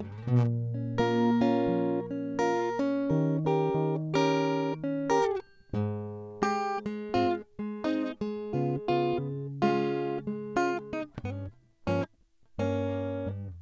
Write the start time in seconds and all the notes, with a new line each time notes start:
0.02 A3
0.30 A#3
0.39 A#2
0.77 C#4
1.00 A#3 F4 A#4
1.43 C#4 F4
1.69 F3 A#3
2.13 C#4
2.41 F4 A#4
2.81 C#4
3.12 D#3 G4 A#4
3.48 C#4 G4 A#4
3.77 D#3
4.16 C#4 G4 A#4
4.86 C#4
5.12 G4 A#4
5.76 G#2
6.44 G#3 G4
6.88 G#3
7.16 G#2 C4 F4
7.61 G#3
7.86 C4 D#4
8.23 G#3
8.55 C#3 B3 F4
8.90 C#3 B3 F4
9.21 C#3
9.64 G#3 C#4 F4
10.29 G#3
10.58 C#4 F4
10.95 B3 D#4
11.27 G2 C#4
11.89 G2 F3 A#3 C#4
12.61 G2 A#3 C#4
13.29 G2